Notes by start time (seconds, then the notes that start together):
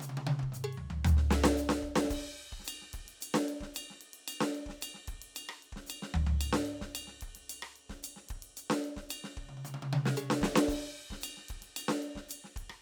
0.01 hi-hat pedal, high tom
0.10 high tom
0.18 high tom
0.27 high tom
0.40 kick, high tom
0.53 hi-hat pedal, mid tom
0.65 percussion
0.73 ride
0.78 floor tom
0.91 floor tom
1.05 hi-hat pedal, floor tom
1.18 snare
1.30 snare, hi-hat pedal
1.44 snare
1.58 hi-hat pedal
1.70 snare
1.83 kick
1.96 snare
2.05 snare
2.10 kick, hi-hat pedal, crash
2.19 cross-stick
2.24 kick
2.53 kick
2.60 snare
2.65 hi-hat pedal, ride bell
2.82 snare
2.94 kick, ride
3.00 kick
3.06 snare, ride
3.10 snare
3.21 hi-hat pedal, ride bell
3.35 snare
3.49 ride
3.61 kick, snare
3.75 hi-hat pedal, ride bell
3.91 snare
3.97 snare
4.02 ride
4.14 ride
4.29 hi-hat pedal, ride bell
4.41 snare
4.55 ride
4.67 kick, snare
4.82 hi-hat pedal, ride bell
4.95 snare
5.08 kick, ride
5.18 kick, snare
5.23 ride
5.36 hi-hat pedal, ride bell
5.50 cross-stick
5.63 ride
5.73 kick, snare
5.87 hi-hat pedal, ride bell
6.03 snare
6.15 kick, floor tom
6.22 kick
6.27 floor tom
6.42 hi-hat pedal, ride bell
6.53 snare
6.66 ride
6.82 kick, snare
6.96 hi-hat pedal, ride bell
7.08 snare
7.22 kick, ride
7.29 kick
7.36 snare, ride
7.50 hi-hat pedal, ride bell
7.63 cross-stick
7.77 ride
7.90 kick, snare
8.04 hi-hat pedal, ride bell
8.17 snare
8.26 snare, ride
8.31 kick, snare
8.36 snare
8.40 kick, ride
8.57 hi-hat pedal, ride bell
8.71 snare
8.85 ride
8.97 kick, snare
9.10 hi-hat pedal, ride bell
9.25 snare
9.38 kick, high tom
9.50 high tom
9.58 high tom
9.66 hi-hat pedal, high tom
9.75 high tom
9.83 high tom
9.94 high tom
10.06 snare
10.17 hi-hat pedal, percussion
10.31 snare
10.42 kick, snare
10.56 snare
10.69 kick, hi-hat pedal, crash
11.11 kick, snare
11.22 hi-hat pedal, ride bell
11.38 snare
11.49 kick, ride
11.56 kick
11.62 snare, ride
11.77 hi-hat pedal, ride bell
11.89 snare
12.03 ride
12.16 kick, snare
12.21 kick
12.29 hi-hat pedal, ride bell
12.45 snare
12.57 kick, ride
12.63 kick
12.70 cross-stick